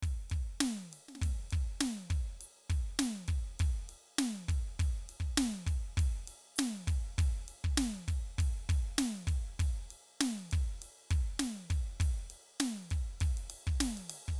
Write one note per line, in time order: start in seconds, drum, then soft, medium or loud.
0.01 kick soft
0.01 ride medium
0.30 kick soft
0.30 ride medium
0.60 snare loud
0.60 hi-hat pedal soft
0.60 ride medium
0.91 hi-hat pedal soft
0.91 ride medium
1.08 snare soft
1.15 snare soft
1.21 kick medium
1.21 snare soft
1.21 ride medium
1.51 kick medium
1.51 ride medium
1.80 snare medium
1.80 ride medium
2.10 kick medium
2.10 ride medium
2.41 hi-hat pedal medium
2.41 ride medium
2.69 kick medium
2.69 ride medium
2.99 snare loud
2.99 hi-hat pedal medium
2.99 ride medium
3.28 kick medium
3.28 ride medium
3.59 kick medium
3.59 ride medium
3.89 ride medium
4.18 snare loud
4.18 ride medium
4.48 kick medium
4.48 ride medium
4.79 kick medium
4.79 ride medium
5.09 ride medium
5.20 kick soft
5.37 snare loud
5.37 ride medium
5.66 kick medium
5.66 ride medium
5.97 kick medium
5.97 ride medium
6.27 ride medium
6.56 snare loud
6.56 hi-hat pedal medium
6.56 ride medium
6.87 kick medium
6.87 ride medium
7.18 kick medium
7.18 ride medium
7.48 ride medium
7.64 kick medium
7.77 snare loud
7.77 ride medium
8.08 kick medium
8.08 ride medium
8.38 kick medium
8.38 ride medium
8.69 kick medium
8.69 ride medium
8.98 snare loud
8.98 ride medium
9.27 kick medium
9.27 ride medium
9.59 kick medium
9.59 ride medium
9.90 ride medium
10.21 snare loud
10.21 ride medium
10.51 kick medium
10.51 ride medium
10.82 ride medium
11.11 kick medium
11.11 ride medium
11.39 snare medium
11.39 ride medium
11.70 kick medium
11.70 ride medium
12.00 kick medium
12.00 ride medium
12.30 ride medium
12.60 snare medium
12.60 ride medium
12.91 kick medium
12.91 ride medium
13.20 kick medium
13.20 ride medium
13.37 ride medium
13.50 ride medium
13.67 kick medium
13.80 snare medium
13.80 ride loud
13.97 ride medium
14.10 ride loud
14.28 kick soft